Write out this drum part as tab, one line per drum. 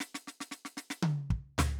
SD |oooooooo----o---|
T1 |--------o-------|
FT |------------o---|
BD |----------o-----|